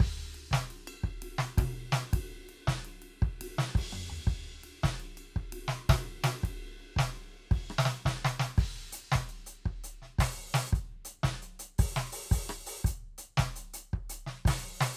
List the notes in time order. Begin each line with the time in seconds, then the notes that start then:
0.01 kick, crash
0.35 ride
0.52 kick, snare, hi-hat pedal
0.71 ride
0.88 ride bell
1.04 kick
1.23 ride
1.39 snare
1.58 kick, high tom, ride
1.93 snare, ride
2.12 kick, hi-hat pedal, ride
2.50 ride
2.68 kick, snare
2.86 ride
3.03 ride
3.21 kick, ride
3.42 ride
3.59 snare
3.76 kick, ride
3.93 mid tom
4.11 floor tom
4.28 kick, ride
4.65 ride
4.84 kick, snare, hi-hat pedal
5.01 ride
5.18 ride bell
5.37 kick
5.53 ride
5.69 snare
5.90 kick, snare, ride
6.25 snare, ride
6.44 kick, hi-hat pedal, ride
6.80 ride
6.97 kick, snare
7.16 ride
7.34 ride
7.51 kick, ride
7.71 cross-stick
7.79 snare
7.86 snare
8.06 kick, snare
8.25 snare
8.40 snare
8.58 kick, hi-hat pedal, crash
8.93 closed hi-hat
9.13 kick, snare
9.30 closed hi-hat
9.47 closed hi-hat
9.67 kick
9.85 closed hi-hat
10.03 snare
10.19 open hi-hat, kick, snare
10.55 open hi-hat, snare
10.70 kick, hi-hat pedal
10.76 closed hi-hat
11.06 closed hi-hat
11.24 kick, snare
11.43 closed hi-hat
11.60 closed hi-hat
11.79 open hi-hat, kick
11.97 snare
12.13 open hi-hat
12.32 open hi-hat, kick
12.50 cross-stick
12.67 open hi-hat
12.81 hi-hat pedal
12.85 closed hi-hat, kick
13.19 closed hi-hat
13.38 kick, snare
13.57 closed hi-hat
13.74 closed hi-hat
13.94 kick
14.10 closed hi-hat
14.27 snare
14.46 open hi-hat, kick, snare
14.81 open hi-hat, snare